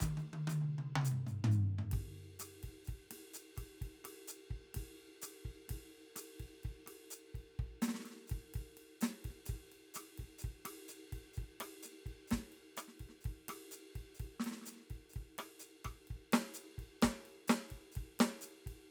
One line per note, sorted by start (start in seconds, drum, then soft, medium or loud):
0.01 kick soft
0.01 hi-hat pedal loud
0.01 high tom medium
0.03 high tom loud
0.09 kick soft
0.18 hi-hat pedal soft
0.18 high tom medium
0.34 high tom medium
0.48 hi-hat pedal medium
0.48 high tom loud
0.62 mid tom soft
0.79 mid tom medium
0.96 mid tom loud
1.02 hi-hat pedal medium
1.02 mid tom soft
1.12 floor tom soft
1.27 floor tom medium
1.27 hi-hat pedal soft
1.45 floor tom loud
1.52 hi-hat pedal soft
1.79 floor tom medium
1.92 kick soft
1.92 ride medium
2.05 kick soft
2.40 cross-stick soft
2.40 hi-hat pedal medium
2.40 ride medium
2.64 kick soft
2.64 ride soft
2.69 kick soft
2.85 kick soft
2.85 hi-hat pedal soft
2.85 ride soft
2.94 kick soft
3.11 snare soft
3.11 ride medium
3.34 hi-hat pedal medium
3.34 ride soft
3.56 kick soft
3.56 cross-stick soft
3.56 hi-hat pedal soft
3.56 ride medium
3.63 kick soft
3.82 kick soft
3.82 ride soft
3.89 snare soft
4.05 cross-stick soft
4.05 snare soft
4.05 ride medium
4.28 hi-hat pedal medium
4.51 kick soft
4.57 kick soft
4.63 snare soft
4.75 kick soft
4.75 snare soft
4.75 ride medium
4.83 kick soft
5.22 cross-stick soft
5.22 snare soft
5.22 hi-hat pedal medium
5.22 ride medium
5.46 kick soft
5.51 kick soft
5.69 kick soft
5.69 snare soft
5.69 ride medium
5.77 kick soft
6.16 cross-stick soft
6.16 snare soft
6.16 hi-hat pedal medium
6.16 ride medium
6.40 kick soft
6.40 ride soft
6.46 kick soft
6.64 kick soft
6.64 ride soft
6.71 kick soft
6.87 cross-stick soft
6.87 ride medium
7.11 hi-hat pedal medium
7.35 kick soft
7.35 ride soft
7.40 kick soft
7.60 kick soft
7.60 ride soft
7.66 kick soft
7.82 snare medium
7.82 hi-hat pedal medium
7.82 ride medium
7.89 snare medium
7.95 snare soft
8.00 snare soft
8.06 snare soft
8.06 ride soft
8.11 snare soft
8.16 snare soft
8.21 snare soft
8.26 snare soft
8.26 hi-hat pedal soft
8.30 kick soft
8.30 snare soft
8.30 ride medium
8.37 kick soft
8.37 snare soft
8.42 snare soft
8.55 kick soft
8.55 ride medium
8.62 kick soft
8.78 ride soft
9.01 snare medium
9.01 hi-hat pedal medium
9.01 ride medium
9.25 kick soft
9.25 ride soft
9.30 kick soft
9.30 snare soft
9.35 snare soft
9.46 kick soft
9.46 hi-hat pedal medium
9.46 ride medium
9.56 kick soft
9.73 ride soft
9.95 cross-stick medium
9.95 hi-hat pedal medium
9.95 ride medium
10.18 kick soft
10.18 snare soft
10.18 ride soft
10.25 kick soft
10.25 snare soft
10.29 snare soft
10.39 hi-hat pedal medium
10.39 ride soft
10.45 kick soft
10.50 kick soft
10.66 cross-stick medium
10.66 ride medium
10.89 hi-hat pedal medium
10.89 ride soft
11.13 kick soft
11.13 ride soft
11.18 kick soft
11.34 hi-hat pedal soft
11.34 ride soft
11.38 kick soft
11.44 kick soft
11.61 cross-stick medium
11.61 ride medium
11.83 snare soft
11.83 hi-hat pedal medium
11.83 ride soft
11.92 snare soft
12.06 kick soft
12.06 ride soft
12.12 kick soft
12.28 snare medium
12.28 hi-hat pedal soft
12.28 ride medium
12.33 kick soft
12.39 kick soft
12.53 ride soft
12.77 cross-stick medium
12.77 hi-hat pedal medium
12.77 ride medium
12.88 snare soft
13.00 kick soft
13.00 ride soft
13.06 kick soft
13.06 snare soft
13.16 snare soft
13.21 hi-hat pedal soft
13.21 ride soft
13.26 kick soft
13.32 kick soft
13.49 cross-stick medium
13.49 ride medium
13.72 hi-hat pedal medium
13.72 ride soft
13.78 snare soft
13.96 kick soft
13.96 ride soft
14.01 kick soft
14.15 hi-hat pedal soft
14.20 kick soft
14.20 ride soft
14.26 kick soft
14.40 snare medium
14.45 snare soft
14.45 ride medium
14.52 snare soft
14.57 snare soft
14.62 snare soft
14.66 snare soft
14.66 hi-hat pedal medium
14.66 ride soft
14.76 snare soft
14.80 snare soft
14.84 snare soft
14.87 snare soft
14.89 kick soft
14.89 snare soft
14.89 ride soft
14.94 kick soft
14.94 snare soft
14.99 snare soft
15.10 hi-hat pedal soft
15.14 kick soft
15.14 ride soft
15.22 kick soft
15.39 cross-stick medium
15.39 ride medium
15.60 hi-hat pedal medium
15.60 ride soft
15.85 kick soft
15.85 cross-stick medium
15.85 ride soft
15.92 kick soft
15.92 snare soft
16.08 kick soft
16.08 ride soft
16.16 kick soft
16.33 snare loud
16.33 ride medium
16.42 cross-stick soft
16.55 hi-hat pedal medium
16.55 ride soft
16.71 snare soft
16.79 kick soft
16.79 ride soft
16.84 kick soft
17.03 kick soft
17.03 snare loud
17.03 ride medium
17.08 cross-stick soft
17.26 ride soft
17.48 snare loud
17.48 hi-hat pedal medium
17.48 ride medium
17.71 kick soft
17.71 ride soft
17.82 snare soft
17.92 hi-hat pedal soft
17.92 ride soft
17.97 kick soft
18.03 kick soft
18.20 snare loud
18.20 ride medium
18.42 hi-hat pedal medium
18.42 ride soft
18.67 kick soft
18.67 ride soft
18.72 kick soft